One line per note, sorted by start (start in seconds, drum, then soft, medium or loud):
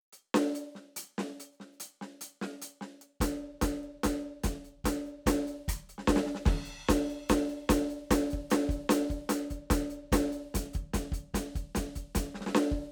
0.13 closed hi-hat medium
0.34 snare loud
0.55 closed hi-hat medium
0.75 snare soft
0.96 closed hi-hat loud
1.18 snare loud
1.32 hi-hat pedal soft
1.40 closed hi-hat medium
1.52 hi-hat pedal soft
1.60 snare soft
1.72 hi-hat pedal soft
1.80 closed hi-hat loud
2.01 snare medium
2.21 closed hi-hat loud
2.41 snare medium
2.62 closed hi-hat loud
2.81 snare medium
3.01 closed hi-hat medium
3.20 closed hi-hat loud
3.20 kick medium
3.20 snare medium
3.61 closed hi-hat loud
3.61 kick medium
3.61 snare medium
3.83 closed hi-hat soft
4.03 closed hi-hat loud
4.03 kick medium
4.03 snare loud
4.43 closed hi-hat loud
4.43 kick medium
4.43 snare loud
4.64 closed hi-hat soft
4.84 closed hi-hat loud
4.84 kick medium
4.84 snare medium
5.05 closed hi-hat soft
5.26 closed hi-hat loud
5.26 kick medium
5.26 snare loud
5.36 kick soft
5.47 closed hi-hat soft
5.68 closed hi-hat loud
5.68 kick medium
5.68 cross-stick medium
5.89 closed hi-hat medium
5.98 snare medium
6.07 kick medium
6.07 snare loud
6.16 kick soft
6.16 snare loud
6.35 snare medium
6.45 kick loud
6.45 snare loud
6.45 crash medium
6.65 closed hi-hat soft
6.89 closed hi-hat loud
6.89 kick medium
6.89 snare loud
7.10 closed hi-hat soft
7.29 closed hi-hat loud
7.29 kick medium
7.29 snare loud
7.49 closed hi-hat soft
7.69 closed hi-hat loud
7.69 kick medium
7.69 snare loud
7.90 closed hi-hat soft
8.10 closed hi-hat loud
8.10 kick medium
8.10 snare loud
8.30 closed hi-hat soft
8.30 kick medium
8.50 closed hi-hat loud
8.50 snare loud
8.69 closed hi-hat soft
8.69 kick medium
8.89 closed hi-hat loud
8.89 snare loud
8.94 snare medium
9.10 closed hi-hat soft
9.10 kick medium
9.19 kick soft
9.29 closed hi-hat loud
9.29 snare loud
9.50 closed hi-hat soft
9.50 kick soft
9.70 closed hi-hat loud
9.70 kick medium
9.70 snare loud
9.90 closed hi-hat soft
10.12 closed hi-hat loud
10.12 kick medium
10.12 snare loud
10.32 closed hi-hat soft
10.54 closed hi-hat loud
10.54 kick medium
10.54 snare loud
10.73 closed hi-hat medium
10.73 kick medium
10.93 closed hi-hat loud
10.93 kick medium
10.93 snare loud
11.12 closed hi-hat medium
11.12 kick medium
11.34 closed hi-hat loud
11.34 kick medium
11.34 snare loud
11.55 closed hi-hat soft
11.55 kick medium
11.75 closed hi-hat loud
11.75 kick medium
11.75 snare loud
11.95 closed hi-hat medium
11.95 kick soft
12.15 closed hi-hat loud
12.15 kick medium
12.15 snare loud
12.29 kick soft
12.34 snare medium
12.41 snare medium
12.46 snare loud
12.55 snare loud
12.71 kick medium